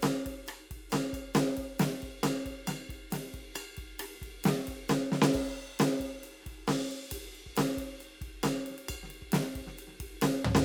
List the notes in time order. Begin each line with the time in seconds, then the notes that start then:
0.01 snare, hi-hat pedal, ride bell
0.16 snare
0.26 kick, ride
0.32 kick
0.47 cross-stick, hi-hat pedal, ride bell
0.71 kick, ride
0.77 kick
0.90 snare, hi-hat pedal, ride bell
1.13 kick, ride bell
1.19 kick
1.34 snare, hi-hat pedal, ride
1.49 snare
1.57 kick, ride
1.64 kick
1.79 snare, hi-hat pedal, ride
2.03 kick, ride
2.09 kick
2.24 snare, hi-hat pedal, ride bell
2.46 kick, ride
2.52 kick
2.67 snare, hi-hat pedal, ride bell
2.90 kick, ride
2.96 kick
3.11 snare, hi-hat pedal, ride
3.34 kick, ride
3.40 kick
3.55 cross-stick, hi-hat pedal, ride bell
3.77 kick, ride
3.84 kick
3.99 cross-stick, hi-hat pedal, ride
4.22 kick, ride
4.28 kick
4.44 snare, hi-hat pedal, ride
4.68 kick, ride
4.74 kick
4.89 snare, hi-hat pedal, ride bell
5.12 snare
5.22 snare
5.33 kick, snare, hi-hat pedal, crash
5.42 kick
5.50 snare
5.80 snare, hi-hat pedal, ride
5.92 snare
6.00 kick, ride
6.13 snare
6.18 snare
6.24 hi-hat pedal, ride
6.43 kick, cross-stick, ride
6.52 kick
6.68 snare, hi-hat pedal, ride
6.80 snare
6.92 ride
7.10 kick, snare, hi-hat pedal, ride
7.18 kick
7.36 ride
7.47 kick
7.56 snare, hi-hat pedal, ride
7.78 kick, ride
7.83 kick
8.00 hi-hat pedal, ride
8.16 snare
8.22 kick, ride
8.29 kick
8.44 snare, hi-hat pedal, ride bell
8.57 snare
8.67 snare, ride
8.79 ride
8.89 kick, hi-hat pedal, ride bell
8.96 kick
9.04 snare
9.08 snare, ride
9.22 kick
9.33 snare, hi-hat pedal, ride
9.43 snare
9.56 kick, ride
9.62 kick
9.67 snare
9.78 hi-hat pedal, ride
9.88 snare
9.94 snare
10.01 kick, ride
10.22 snare, hi-hat pedal, ride
10.45 floor tom
10.55 snare